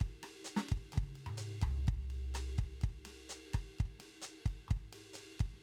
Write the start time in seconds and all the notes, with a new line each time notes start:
0.01 kick, ride
0.07 kick
0.24 cross-stick, ride
0.45 hi-hat pedal, ride
0.57 snare
0.69 kick, ride
0.77 kick
0.93 high tom, ride
0.98 kick
1.04 kick
1.16 ride
1.27 mid tom
1.38 hi-hat pedal, ride
1.62 kick, floor tom, ride
1.68 kick
1.88 kick, ride
1.95 kick
2.02 snare
2.11 ride
2.35 cross-stick, snare, hi-hat pedal, ride
2.59 kick, ride
2.64 kick
2.82 kick, ride
2.89 kick
3.06 snare, ride
3.30 hi-hat pedal, ride
3.54 kick, cross-stick, ride
3.79 kick, ride
3.86 kick
3.99 snare, ride
4.22 hi-hat pedal, ride
4.46 kick, ride
4.69 kick, mid tom, ride
4.72 mid tom
4.77 kick, mid tom
4.93 ride
5.14 hi-hat pedal, ride
5.40 kick, ride
5.46 kick
5.54 snare